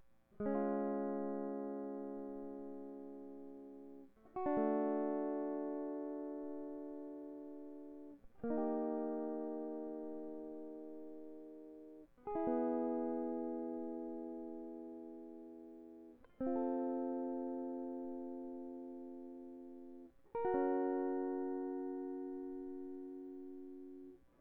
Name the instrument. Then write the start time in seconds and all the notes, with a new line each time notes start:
electric guitar
0.40 G#3
0.46 C#4
0.56 F4
4.35 F#4
4.47 D4
4.56 A3
8.43 A#3
8.52 D#4
8.59 G4
12.27 G#4
12.35 E4
12.48 B3
16.39 C4
16.48 F4
16.56 A4
20.35 A#4
20.44 F#4
20.56 C#4